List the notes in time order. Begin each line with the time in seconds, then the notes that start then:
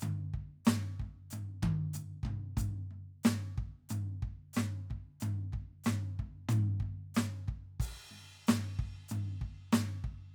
0.01 floor tom, hi-hat pedal, high tom
0.34 kick, floor tom
0.65 snare, floor tom, hi-hat pedal
1.00 kick, floor tom
1.31 floor tom, hi-hat pedal
1.63 kick, floor tom, high tom
1.94 floor tom, hi-hat pedal
2.24 kick, floor tom, mid tom
2.58 kick, floor tom, hi-hat pedal
2.91 floor tom
3.24 snare, floor tom, hi-hat pedal
3.58 kick, floor tom
3.90 floor tom, hi-hat pedal
4.23 kick, floor tom
4.54 snare, floor tom, hi-hat pedal
4.91 kick, floor tom
5.21 floor tom, hi-hat pedal
5.53 kick, floor tom
5.84 snare, floor tom, hi-hat pedal
6.20 kick, floor tom
6.49 floor tom, hi-hat pedal
6.81 kick, floor tom
7.15 snare, hi-hat pedal, floor tom
7.48 kick, floor tom
7.80 kick, hi-hat pedal, crash
8.12 floor tom
8.48 snare, hi-hat pedal, floor tom
8.79 kick, floor tom
9.09 floor tom, hi-hat pedal
9.42 kick, floor tom
9.73 snare, floor tom, hi-hat pedal
10.04 kick, floor tom